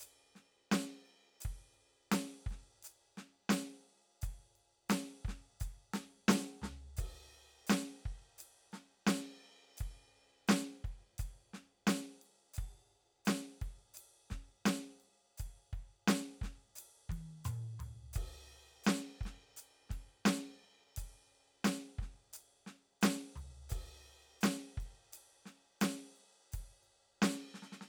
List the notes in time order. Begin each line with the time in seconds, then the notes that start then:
0.01 hi-hat pedal, ride
0.36 snare, ride
0.72 snare, hi-hat pedal, ride
1.07 ride
1.41 hi-hat pedal, ride
1.46 kick
1.74 ride
2.12 snare, hi-hat pedal, ride
2.47 kick, ride
2.52 snare
2.83 hi-hat pedal, ride
3.18 snare, ride
3.50 snare, hi-hat pedal, ride
4.22 kick, hi-hat pedal, ride
4.56 ride
4.90 snare, hi-hat pedal, ride
5.25 kick, snare, ride
5.61 kick, hi-hat pedal, ride
5.94 snare, ride
6.29 snare, hi-hat pedal, ride
6.62 snare, floor tom
6.97 kick, hi-hat pedal, crash
7.67 snare, hi-hat pedal, ride
8.06 kick, ride
8.39 hi-hat pedal, ride
8.73 snare, ride
9.07 snare, hi-hat pedal, ride
9.78 kick, hi-hat pedal, ride
10.49 snare, hi-hat pedal, ride
10.85 kick, ride
11.19 kick, hi-hat pedal, ride
11.54 snare, ride
11.88 snare, hi-hat pedal, ride
12.22 ride
12.54 hi-hat pedal, crash
12.59 kick
13.26 snare, hi-hat pedal, ride
13.62 kick, ride
13.95 hi-hat pedal, ride
14.31 kick, snare, ride
14.66 snare, hi-hat pedal, ride
15.01 ride
15.38 kick, hi-hat pedal, ride
15.74 kick, ride
16.08 snare, hi-hat pedal, ride
16.42 kick, snare, ride
16.76 hi-hat pedal, ride
17.10 kick, high tom, ride
17.45 hi-hat pedal, mid tom, ride
17.80 floor tom, ride
18.14 kick, hi-hat pedal, crash
18.84 snare, hi-hat pedal, ride
19.22 kick, ride
19.26 snare
19.57 hi-hat pedal, ride
19.90 kick, snare, ride
20.26 snare, hi-hat pedal, ride
20.97 kick, hi-hat pedal, ride
21.65 snare, hi-hat pedal, ride
21.99 kick, snare, ride
22.34 hi-hat pedal, ride
22.67 snare, ride
23.02 snare, hi-hat pedal, ride
23.36 floor tom, ride
23.70 kick, hi-hat pedal, crash
24.42 snare, hi-hat pedal, ride
24.78 kick, ride
25.13 hi-hat pedal, ride
25.46 snare, ride
25.82 snare, hi-hat pedal, ride
26.16 ride
26.53 kick, hi-hat pedal, ride
26.84 ride
27.23 snare, hi-hat pedal, ride
27.55 snare
27.63 snare
27.73 snare
27.82 snare